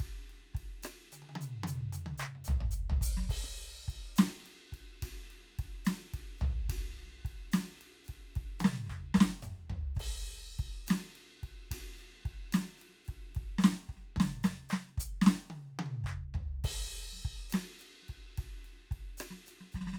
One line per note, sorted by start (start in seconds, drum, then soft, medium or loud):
0.01 kick soft
0.01 ride medium
0.07 kick soft
0.31 ride soft
0.55 kick soft
0.55 snare soft
0.55 ride medium
0.84 cross-stick medium
0.84 hi-hat pedal medium
0.84 ride loud
1.13 hi-hat pedal medium
1.13 high tom medium
1.23 high tom medium
1.30 high tom medium
1.37 high tom loud
1.42 hi-hat pedal medium
1.65 hi-hat pedal medium
1.65 high tom loud
1.94 hi-hat pedal medium
1.94 high tom medium
2.07 open hi-hat soft
2.07 high tom loud
2.19 percussion loud
2.19 hi-hat pedal medium
2.36 mid tom soft
2.46 floor tom loud
2.46 hi-hat pedal medium
2.62 mid tom medium
2.72 hi-hat pedal medium
2.91 floor tom loud
3.02 kick soft
3.02 hi-hat pedal loud
3.09 kick soft
3.18 snare medium
3.24 snare soft
3.31 kick soft
3.31 crash loud
3.37 kick soft
3.41 kick soft
3.41 cross-stick soft
3.89 kick soft
3.89 ride medium
4.17 snare loud
4.17 hi-hat pedal medium
4.17 ride loud
4.29 snare soft
4.45 snare soft
4.45 ride medium
4.55 snare soft
4.61 snare soft
4.64 snare soft
4.66 snare soft
4.74 kick soft
4.74 ride medium
5.04 kick soft
5.04 ride loud
5.32 ride medium
5.60 kick soft
5.60 ride medium
5.66 kick soft
5.86 snare medium
5.86 hi-hat pedal medium
5.86 ride loud
5.95 snare soft
6.15 kick soft
6.15 ride medium
6.21 kick soft
6.39 kick soft
6.39 floor tom loud
6.39 hi-hat pedal soft
6.70 kick soft
6.70 ride loud
6.76 kick soft
7.00 ride soft
7.07 snare soft
7.10 snare soft
7.13 snare soft
7.15 snare soft
7.26 kick soft
7.26 ride medium
7.53 snare loud
7.53 hi-hat pedal medium
7.53 ride loud
7.65 snare soft
7.78 hi-hat pedal soft
7.78 ride medium
8.06 hi-hat pedal soft
8.06 ride medium
8.10 kick soft
8.37 kick soft
8.37 ride medium
8.44 kick soft
8.61 hi-hat pedal medium
8.61 high tom loud
8.66 snare loud
8.74 snare medium
8.88 kick soft
8.88 snare soft
8.88 percussion medium
8.95 snare soft
8.99 snare soft
9.16 kick soft
9.16 snare loud
9.22 snare loud
9.30 snare soft
9.44 hi-hat pedal medium
9.44 mid tom medium
9.52 snare soft
9.61 snare soft
9.71 kick soft
9.71 floor tom loud
9.77 kick soft
9.96 kick soft
9.96 cross-stick soft
9.96 hi-hat pedal soft
10.01 crash medium
10.05 kick soft
10.59 kick soft
10.59 snare soft
10.59 ride medium
10.67 kick soft
10.88 snare loud
10.88 hi-hat pedal medium
10.88 ride loud
11.17 ride medium
11.44 kick soft
11.44 ride medium
11.72 kick soft
11.72 ride loud
11.78 kick soft
11.99 hi-hat pedal soft
11.99 ride soft
12.27 kick soft
12.27 ride soft
12.54 snare loud
12.54 hi-hat pedal medium
12.54 ride loud
12.63 snare soft
12.79 hi-hat pedal soft
12.79 ride medium
12.90 snare soft
13.06 kick soft
13.06 hi-hat pedal soft
13.06 ride medium
13.31 snare soft
13.36 kick soft
13.36 ride medium
13.44 kick soft
13.60 snare loud
13.60 hi-hat pedal medium
13.65 snare loud
13.73 snare medium
13.90 kick soft
13.98 snare soft
14.18 kick soft
14.18 snare loud
14.18 high tom loud
14.25 kick soft
14.45 snare loud
14.45 hi-hat pedal medium
14.70 snare loud
14.70 percussion loud
14.70 hi-hat pedal medium
14.89 snare soft
14.99 kick medium
14.99 hi-hat pedal loud
15.06 kick soft
15.23 snare loud
15.28 snare loud
15.51 high tom medium
15.80 high tom loud
15.87 high tom soft
16.05 kick soft
16.05 percussion medium
16.05 high tom soft
16.35 kick soft
16.35 floor tom medium
16.65 kick medium
16.65 crash loud
16.77 kick soft
17.14 snare soft
17.17 snare soft
17.24 kick soft
17.24 ride soft
17.32 kick soft
17.51 hi-hat pedal medium
17.51 ride loud
17.55 snare loud
17.78 snare soft
17.78 hi-hat pedal soft
17.83 ride medium
18.04 snare soft
18.10 kick soft
18.10 ride soft
18.39 kick soft
18.39 ride medium
18.45 kick soft
18.65 hi-hat pedal soft
18.65 ride soft
18.92 kick soft
18.92 ride medium
19.19 cross-stick medium
19.19 hi-hat pedal medium
19.19 ride loud
19.32 snare soft
19.48 hi-hat pedal soft
19.48 ride medium
19.62 snare soft
19.73 kick soft
19.73 snare soft
19.73 hi-hat pedal soft
19.82 snare soft
19.87 snare soft
19.87 snare medium
19.95 snare medium